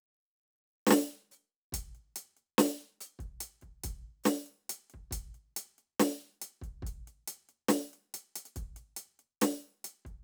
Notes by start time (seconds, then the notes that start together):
0.87 snare
0.91 snare
1.31 hi-hat pedal
1.72 kick, closed hi-hat
1.95 closed hi-hat
2.16 closed hi-hat
2.37 closed hi-hat
2.58 snare, closed hi-hat
2.81 closed hi-hat
3.01 closed hi-hat
3.19 kick, closed hi-hat
3.40 closed hi-hat
3.61 kick, closed hi-hat
3.83 kick, open hi-hat
4.24 snare, closed hi-hat, hi-hat pedal
4.46 closed hi-hat
4.69 closed hi-hat
4.90 kick, closed hi-hat
5.11 kick, closed hi-hat
5.34 closed hi-hat
5.56 closed hi-hat
5.78 closed hi-hat
5.99 snare, closed hi-hat
6.21 closed hi-hat
6.42 closed hi-hat
6.61 kick, closed hi-hat
6.82 kick
6.87 closed hi-hat
7.07 closed hi-hat
7.27 closed hi-hat
7.49 closed hi-hat
7.68 snare, closed hi-hat
7.93 closed hi-hat
8.14 closed hi-hat
8.36 closed hi-hat
8.45 closed hi-hat
8.56 kick, closed hi-hat
8.76 closed hi-hat
8.96 closed hi-hat
9.19 closed hi-hat
9.41 snare, closed hi-hat
9.84 closed hi-hat
10.05 kick, closed hi-hat